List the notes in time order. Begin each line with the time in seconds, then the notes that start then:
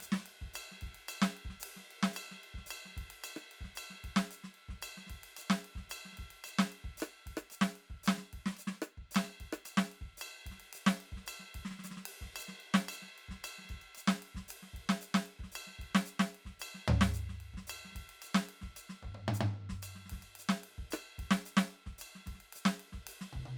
0.01 hi-hat pedal, ride
0.12 snare
0.26 ride
0.42 kick
0.54 hi-hat pedal, ride bell
0.72 snare
0.81 kick, snare, ride
0.89 snare
0.95 ride
1.09 hi-hat pedal, ride bell
1.22 snare
1.37 ride
1.45 kick
1.50 snare
1.60 hi-hat pedal, ride
1.77 snare
1.91 ride
2.03 snare
2.14 hi-hat pedal, ride bell
2.32 snare
2.44 ride
2.55 kick, snare
2.67 hi-hat pedal
2.71 ride bell
2.86 snare
2.91 snare
2.97 kick, snare, ride
3.02 snare
3.11 ride
3.24 hi-hat pedal, ride bell
3.37 cross-stick
3.52 ride
3.61 kick, snare
3.76 hi-hat pedal, ride bell
3.91 snare
4.04 kick, ride
4.17 snare
4.31 hi-hat pedal, ride
4.44 snare
4.55 ride
4.69 kick, snare
4.82 hi-hat pedal, ride bell
4.98 snare
5.07 kick, snare, ride
5.24 ride
5.37 hi-hat pedal, ride bell
5.50 snare
5.65 ride
5.76 kick, snare
5.90 hi-hat pedal, ride bell
6.06 snare
6.13 snare
6.17 kick, snare, ride
6.31 ride
6.45 hi-hat pedal, ride bell
6.59 snare
6.72 ride
6.85 kick
6.98 hi-hat pedal, ride bell
7.03 cross-stick
7.27 kick, ride
7.37 cross-stick
7.51 hi-hat pedal, ride bell
7.62 snare
7.76 ride
7.90 kick
8.04 hi-hat pedal, ride bell
8.08 snare
8.18 snare
8.33 kick, ride
8.46 snare
8.57 hi-hat pedal, ride bell
8.68 snare
8.82 cross-stick
8.98 kick
9.12 hi-hat pedal, ride bell
9.16 snare
9.24 snare
9.41 kick, ride
9.53 cross-stick
9.66 hi-hat pedal, ride bell
9.78 snare
9.92 ride
10.02 kick
10.18 hi-hat pedal
10.22 ride bell
10.46 kick, ride
10.52 snare
10.60 ride
10.73 hi-hat pedal, ride
10.87 snare
11.01 ride
11.12 kick
11.18 snare
11.27 hi-hat pedal, ride bell
11.40 snare
11.55 kick, ride
11.66 snare
11.71 snare
11.79 snare
11.84 snare, hi-hat pedal
11.90 snare
11.97 snare
12.06 ride
12.22 kick, snare
12.36 hi-hat pedal, ride bell
12.49 snare
12.61 ride
12.74 snare
12.89 hi-hat pedal, ride bell
13.03 snare
13.18 ride
13.29 kick, snare
13.44 hi-hat pedal, ride bell
13.59 snare
13.65 snare
13.70 kick, snare, ride bell
13.73 snare
13.82 ride bell
13.95 hi-hat pedal, ride bell
14.08 snare
14.23 ride
14.35 kick, snare
14.49 hi-hat pedal, ride
14.63 snare
14.74 kick, ride
14.90 snare
15.01 hi-hat pedal, ride
15.15 snare
15.26 ride
15.40 kick
15.44 snare
15.52 hi-hat pedal, ride bell
15.67 snare
15.79 kick, ride
15.95 snare
16.06 hi-hat pedal, ride
16.20 snare
16.35 ride
16.46 kick, snare
16.60 hi-hat pedal, ride bell
16.75 snare
16.88 floor tom
17.01 snare
17.14 hi-hat pedal, ride
17.30 snare
17.41 ride
17.54 kick, snare
17.59 kick
17.68 hi-hat pedal, ride bell
17.85 snare
17.93 kick, snare, ride
17.97 snare
18.10 ride
18.22 hi-hat pedal, ride bell
18.35 snare
18.49 ride
18.62 kick, snare
18.77 hi-hat pedal, ride bell
18.90 snare
19.03 kick, mid tom
19.15 mid tom
19.29 mid tom
19.34 hi-hat pedal
19.41 mid tom
19.54 mid tom
19.70 kick, snare
19.83 hi-hat pedal, ride bell
19.96 snare
20.10 kick, snare, ride
20.18 kick, snare
20.23 ride bell
20.36 hi-hat pedal, ride
20.49 snare
20.64 ride
20.78 kick
20.91 cross-stick, hi-hat pedal, ride bell
21.19 kick, ride
21.25 kick
21.31 snare
21.46 hi-hat pedal, ride
21.57 snare
21.71 ride
21.87 kick, snare
21.92 kick
21.99 hi-hat pedal, ride bell
22.16 snare
22.26 kick, snare, ride
22.35 snare
22.41 ride
22.53 hi-hat pedal, ride
22.66 snare
22.80 ride
22.93 kick, snare
23.07 hi-hat pedal, ride
23.21 snare
23.33 kick, high tom
23.46 high tom